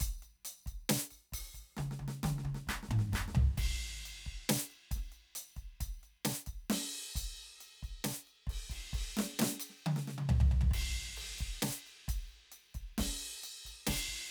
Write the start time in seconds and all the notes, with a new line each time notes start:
0.01 closed hi-hat, kick
0.23 closed hi-hat
0.46 closed hi-hat
0.67 kick, closed hi-hat
0.90 closed hi-hat, snare
1.11 kick, percussion
1.33 kick, percussion
1.55 kick, percussion
1.77 kick, snare, high tom
1.92 snare
2.00 kick, high tom
2.09 snare
2.24 kick, snare, hi-hat pedal, high tom
2.39 snare
2.44 kick, high tom
2.55 snare
2.68 kick, snare, percussion, hi-hat pedal
2.84 snare
2.89 kick, mid tom
3.00 snare
3.13 kick, snare, percussion
3.29 snare
3.35 kick, floor tom
3.58 kick, ride
3.66 kick
4.06 closed hi-hat
4.27 kick, closed hi-hat
4.50 closed hi-hat, snare
4.71 closed hi-hat
4.92 kick, closed hi-hat
4.96 snare
5.12 closed hi-hat
5.36 closed hi-hat
5.57 kick, closed hi-hat
5.81 kick, closed hi-hat
6.04 closed hi-hat
6.26 snare, closed hi-hat
6.47 kick, closed hi-hat
6.71 snare, crash
7.16 closed hi-hat, kick
7.38 closed hi-hat
7.61 closed hi-hat
7.83 kick, closed hi-hat
8.05 snare, closed hi-hat
8.28 closed hi-hat
8.48 kick, crash
8.70 kick, ride
8.94 kick, crash
9.18 snare
9.19 snare
9.40 snare
9.42 snare
9.60 hi-hat pedal
9.70 snare
9.87 high tom
9.97 snare
10.08 snare
10.19 closed hi-hat, high tom
10.30 floor tom
10.41 floor tom
10.52 floor tom
10.62 floor tom
10.72 kick, ride
11.17 crash
11.39 kick, closed hi-hat
11.63 snare, closed hi-hat
11.87 closed hi-hat
12.09 kick, closed hi-hat
12.30 closed hi-hat
12.52 closed hi-hat
12.75 kick, closed hi-hat
12.99 kick, snare, crash
13.20 closed hi-hat
13.44 closed hi-hat
13.66 kick, closed hi-hat
13.87 kick, snare, hi-hat pedal, ride
14.09 kick
14.26 hi-hat pedal